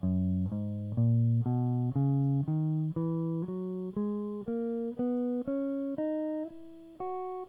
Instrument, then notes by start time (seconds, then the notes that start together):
electric guitar
0.06 F#2
0.51 G#2
1.00 A#2
1.48 B2
1.97 C#3
2.50 D#3
2.98 E3
3.48 F#3
3.98 G#3
4.50 A#3
5.00 B3
5.49 C#4
5.99 D#4
6.51 E4
7.01 F#4